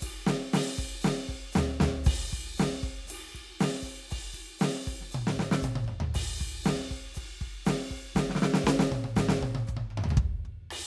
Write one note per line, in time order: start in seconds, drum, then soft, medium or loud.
0.01 kick medium
0.01 hi-hat pedal medium
0.01 crash loud
0.27 snare loud
0.27 crash medium
0.53 snare loud
0.53 hi-hat pedal medium
0.53 crash loud
0.79 kick medium
0.79 crash medium
1.02 snare loud
1.02 hi-hat pedal medium
1.06 crash medium
1.29 kick medium
1.29 crash medium
1.53 snare loud
1.53 floor tom loud
1.53 hi-hat pedal medium
1.81 kick soft
1.81 snare loud
1.81 floor tom loud
2.04 kick loud
2.04 hi-hat pedal medium
2.04 crash loud
2.33 kick medium
2.58 snare loud
2.58 hi-hat pedal medium
2.58 crash medium
2.83 kick medium
2.83 crash soft
3.06 snare soft
3.06 hi-hat pedal medium
3.11 crash loud
3.35 kick soft
3.35 crash medium
3.60 snare loud
3.60 hi-hat pedal medium
3.60 crash medium
3.83 kick soft
3.83 crash medium
4.10 kick medium
4.10 hi-hat pedal medium
4.10 crash medium
4.34 kick soft
4.34 crash medium
4.60 snare loud
4.60 hi-hat pedal medium
4.60 crash medium
4.88 kick medium
4.88 crash medium
5.01 snare soft
5.12 kick soft
5.12 hi-hat pedal medium
5.12 high tom loud
5.27 snare loud
5.36 kick soft
5.36 snare loud
5.52 snare loud
5.62 kick medium
5.62 hi-hat pedal medium
5.62 high tom loud
5.76 high tom loud
5.85 kick soft
5.85 mid tom medium
6.01 floor tom loud
6.15 kick medium
6.15 hi-hat pedal medium
6.15 crash loud
6.41 kick medium
6.41 crash soft
6.64 snare loud
6.64 hi-hat pedal medium
6.64 crash medium
6.91 kick medium
6.91 crash soft
7.15 kick medium
7.15 hi-hat pedal medium
7.15 crash medium
7.41 kick medium
7.41 crash soft
7.66 kick soft
7.66 snare loud
7.66 hi-hat pedal medium
7.66 crash medium
7.91 kick medium
7.91 crash medium
8.15 kick medium
8.15 snare loud
8.15 hi-hat pedal medium
8.30 snare medium
8.36 snare loud
8.43 snare loud
8.54 snare loud
8.64 kick medium
8.64 snare loud
8.64 hi-hat pedal medium
8.80 snare loud
8.92 kick soft
8.92 high tom loud
9.05 high tom loud
9.16 kick medium
9.16 snare loud
9.16 hi-hat pedal medium
9.29 snare loud
9.41 kick medium
9.41 high tom loud
9.55 high tom loud
9.68 kick medium
9.68 hi-hat pedal soft
9.68 high tom medium
9.77 high tom loud
9.83 kick soft
9.91 mid tom soft
9.98 mid tom loud
10.04 floor tom loud
10.10 floor tom loud
10.10 ride soft
10.18 kick loud
10.45 kick soft
10.71 cross-stick medium
10.71 crash loud